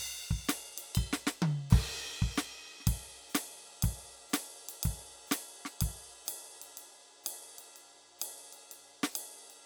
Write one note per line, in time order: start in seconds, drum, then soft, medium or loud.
0.31 kick medium
0.44 hi-hat pedal soft
0.49 snare loud
0.49 ride loud
0.78 ride medium
0.95 kick medium
0.95 ride bell loud
1.13 snare loud
1.27 snare loud
1.42 high tom loud
1.70 kick loud
1.70 crash medium
1.70 ride loud
2.22 kick medium
2.35 snare loud
2.35 hi-hat pedal soft
2.80 snare soft
2.87 kick medium
2.87 snare soft
2.87 ride loud
3.29 hi-hat pedal soft
3.35 snare loud
3.35 ride loud
3.82 kick medium
3.82 ride loud
4.29 hi-hat pedal soft
4.33 snare loud
4.33 ride loud
4.69 ride medium
4.83 kick medium
4.83 ride loud
5.27 hi-hat pedal soft
5.31 snare loud
5.31 ride loud
5.65 snare medium
5.81 kick medium
5.81 ride loud
6.26 hi-hat pedal medium
6.26 ride loud
6.62 ride medium
6.77 ride medium
7.24 hi-hat pedal soft
7.24 ride loud
7.58 ride medium
7.76 ride soft
8.19 hi-hat pedal soft
8.19 ride loud
8.53 ride soft
8.71 ride medium
9.03 snare loud
9.11 hi-hat pedal medium
9.11 ride loud
9.50 ride soft